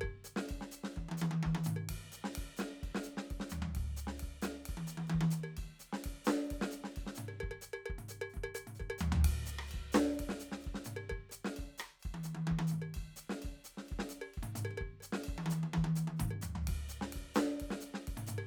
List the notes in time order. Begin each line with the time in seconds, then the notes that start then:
0.01 kick, percussion
0.24 hi-hat pedal, percussion
0.36 snare
0.46 hi-hat pedal, ride bell
0.51 kick
0.61 snare
0.71 hi-hat pedal, ride bell
0.84 snare
0.93 hi-hat pedal, high tom
0.97 kick
1.05 kick
1.09 high tom
1.11 high tom
1.17 hi-hat pedal
1.22 high tom
1.31 high tom
1.43 kick, high tom
1.52 kick, high tom
1.64 hi-hat pedal, mid tom
1.76 percussion
1.89 kick, ride
2.12 hi-hat pedal, ride
2.24 snare
2.33 hi-hat pedal, ride
2.38 kick
2.57 snare, hi-hat pedal
2.83 kick, ride bell
2.95 snare
3.03 hi-hat pedal, ride
3.17 snare
3.30 kick, ride
3.40 snare
3.50 floor tom, hi-hat pedal
3.62 floor tom
3.75 kick, ride
3.85 kick
3.97 hi-hat pedal, ride
4.07 snare
4.17 hi-hat pedal, ride
4.23 kick
4.42 snare, hi-hat pedal
4.62 hi-hat pedal, ride
4.69 kick
4.77 kick, high tom
4.87 hi-hat pedal, high tom
4.97 high tom
5.07 hi-hat pedal, high tom, crash
5.14 kick
5.21 high tom
5.31 hi-hat pedal, high tom
5.44 percussion
5.57 kick, ride bell
5.80 hi-hat pedal, ride
5.93 snare
6.00 hi-hat pedal
6.04 kick, ride
6.25 snare, hi-hat pedal
6.45 hi-hat pedal
6.51 kick, ride
6.61 snare
6.71 hi-hat pedal, ride
6.84 snare
6.91 hi-hat pedal
6.96 kick, ride bell
7.07 snare
7.15 hi-hat pedal, mid tom
7.28 percussion
7.40 kick, percussion
7.51 percussion
7.61 hi-hat pedal, percussion
7.73 percussion
7.86 percussion
7.90 kick
7.98 mid tom
8.09 hi-hat pedal, percussion
8.21 percussion
8.30 hi-hat pedal
8.34 kick, mid tom
8.44 percussion
8.55 hi-hat pedal, percussion
8.67 mid tom
8.75 hi-hat pedal
8.80 kick, percussion
8.90 percussion
8.98 floor tom, hi-hat pedal
9.12 floor tom
9.24 kick, ride
9.34 kick
9.46 hi-hat pedal
9.50 ride
9.59 cross-stick
9.68 hi-hat pedal, ride bell
9.74 kick
9.92 snare, hi-hat pedal
10.13 hi-hat pedal
10.19 kick, ride
10.29 snare
10.40 hi-hat pedal, ride
10.52 snare
10.60 hi-hat pedal, ride bell
10.67 kick
10.75 snare
10.84 hi-hat pedal, mid tom
10.96 percussion
11.10 kick, percussion
11.30 hi-hat pedal, percussion
11.45 snare
11.53 hi-hat pedal, ride bell
11.59 kick
11.78 cross-stick, hi-hat pedal
11.99 hi-hat pedal, ride bell
12.05 kick
12.14 high tom
12.23 hi-hat pedal, high tom
12.35 high tom
12.47 kick, high tom
12.57 kick, high tom
12.67 hi-hat pedal
12.71 mid tom
12.82 percussion
12.94 kick, ride bell
13.05 kick
13.16 hi-hat pedal, ride
13.30 snare
13.38 hi-hat pedal, ride bell
13.45 kick
13.64 hi-hat pedal, ride
13.77 snare
13.86 hi-hat pedal, ride bell
13.92 kick
13.99 snare
14.09 hi-hat pedal, ride
14.21 percussion
14.34 kick, ride bell
14.43 mid tom
14.55 hi-hat pedal, mid tom
14.65 percussion
14.71 percussion
14.78 kick, percussion
15.00 hi-hat pedal, percussion
15.13 snare
15.24 hi-hat pedal, ride bell
15.28 kick
15.37 kick, high tom
15.46 high tom
15.50 hi-hat pedal, high tom
15.63 high tom
15.74 high tom
15.78 kick
15.84 kick, high tom
15.96 hi-hat pedal, high tom
16.07 high tom
16.17 hi-hat pedal, mid tom
16.22 kick
16.30 kick, percussion
16.42 floor tom, hi-hat pedal
16.55 floor tom
16.63 hi-hat pedal
16.67 kick, ride
16.78 kick
16.89 hi-hat pedal, ride
17.01 snare
17.10 hi-hat pedal, ride
17.16 kick
17.34 snare, hi-hat pedal
17.60 kick, ride
17.71 snare
17.81 hi-hat pedal, ride
17.94 snare
18.02 hi-hat pedal
18.07 kick, ride
18.16 kick, mid tom
18.27 hi-hat pedal, mid tom
18.38 percussion